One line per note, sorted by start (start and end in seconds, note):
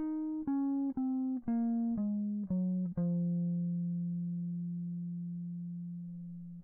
0.00 0.46 D#4
0.48 0.94 C#4
0.97 1.42 C4
1.48 1.99 A#3
1.98 2.47 G#3
2.51 2.88 F#3
2.88 2.95 F3
2.98 6.64 F3